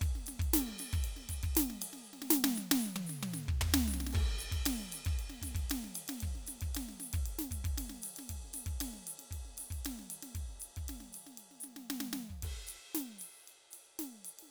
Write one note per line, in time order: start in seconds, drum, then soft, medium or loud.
0.01 kick medium
0.01 ride medium
0.15 snare soft
0.26 snare soft
0.26 hi-hat pedal medium
0.26 ride medium
0.39 kick soft
0.39 ride medium
0.53 snare medium
0.53 ride medium
0.68 snare soft
0.78 snare soft
0.78 hi-hat pedal medium
0.78 ride medium
0.93 kick medium
0.93 ride medium
1.04 ride medium
1.16 snare soft
1.29 kick soft
1.29 hi-hat pedal medium
1.29 ride medium
1.43 kick soft
1.43 ride medium
1.55 snare medium
1.55 ride medium
1.70 snare soft
1.81 hi-hat pedal medium
1.81 ride loud
1.93 snare soft
2.03 hi-hat pedal soft
2.13 snare soft
2.22 snare soft
2.28 snare medium
2.28 hi-hat pedal soft
2.44 snare loud
2.55 snare soft
2.55 hi-hat pedal medium
2.71 snare loud
2.79 hi-hat pedal medium
2.86 snare soft
2.96 high tom medium
3.06 snare soft
3.06 hi-hat pedal medium
3.23 high tom medium
3.33 snare soft
3.33 hi-hat pedal medium
3.48 kick soft
3.61 floor tom loud
3.61 hi-hat pedal soft
3.74 snare loud
3.87 snare soft
3.87 hi-hat pedal medium
3.93 snare soft
4.00 snare soft
4.06 snare soft
4.10 snare soft
4.10 ride medium
4.15 kick medium
4.28 snare soft
4.38 hi-hat pedal medium
4.38 ride medium
4.51 kick soft
4.51 ride medium
4.65 snare medium
4.65 ride loud
4.79 snare soft
4.92 snare soft
4.92 hi-hat pedal medium
4.92 ride medium
5.05 kick medium
5.05 ride medium
5.19 ride medium
5.29 snare soft
5.41 kick soft
5.41 snare soft
5.41 hi-hat pedal medium
5.41 ride medium
5.55 kick soft
5.55 ride medium
5.70 snare medium
5.70 ride medium
5.84 snare soft
5.94 hi-hat pedal medium
5.94 ride medium
6.08 snare medium
6.08 ride medium
6.20 kick soft
6.20 ride medium
6.35 snare soft
6.46 snare soft
6.46 hi-hat pedal medium
6.46 ride medium
6.61 kick soft
6.61 ride medium
6.74 snare medium
6.74 ride loud
6.88 snare soft
7.00 snare soft
7.00 hi-hat pedal medium
7.13 kick soft
7.13 ride medium
7.26 ride medium
7.38 snare medium
7.51 kick soft
7.51 hi-hat pedal medium
7.51 ride medium
7.64 kick soft
7.64 ride medium
7.77 snare soft
7.77 ride loud
7.89 snare soft
8.02 hi-hat pedal medium
8.02 ride medium
8.16 snare soft
8.16 ride medium
8.29 kick soft
8.29 ride medium
8.44 snare soft
8.53 snare soft
8.53 hi-hat pedal medium
8.53 ride medium
8.66 kick soft
8.66 ride medium
8.80 snare medium
8.80 ride loud
8.93 snare soft
9.07 hi-hat pedal medium
9.07 ride medium
9.18 snare soft
9.18 ride medium
9.31 kick soft
9.31 ride medium
9.45 snare soft
9.57 snare soft
9.57 hi-hat pedal medium
9.57 ride medium
9.70 kick soft
9.70 ride medium
9.85 snare medium
9.85 ride medium
9.99 snare soft
10.10 hi-hat pedal medium
10.10 ride medium
10.22 snare soft
10.22 ride medium
10.34 kick soft
10.34 ride medium
10.48 snare soft
10.60 hi-hat pedal medium
10.60 ride medium
10.65 snare soft
10.76 kick soft
10.76 ride soft
10.88 snare soft
10.88 ride medium
11.00 snare soft
11.12 hi-hat pedal medium
11.12 ride medium
11.26 snare soft
11.37 ride medium
11.51 snare soft
11.60 snare soft
11.60 hi-hat pedal medium
11.76 snare soft
11.90 snare medium
12.00 snare medium
12.11 snare medium
12.11 hi-hat pedal soft
12.30 kick soft
12.42 kick soft
12.42 ride medium
12.42 crash soft
12.67 hi-hat pedal medium
12.67 ride medium
12.95 snare medium
12.95 ride medium
13.18 hi-hat pedal medium
13.18 ride medium
13.47 ride soft
13.70 hi-hat pedal soft
13.70 ride medium
13.99 snare soft
13.99 ride medium
14.24 hi-hat pedal medium
14.24 ride medium
14.39 snare soft
14.39 ride medium